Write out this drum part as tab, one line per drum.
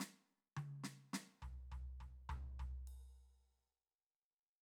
CC |--------|--x-----|
HH |p-------|--------|
SD |o--go---|--------|
T1 |--o-----|--------|
FT |-----ogg|og------|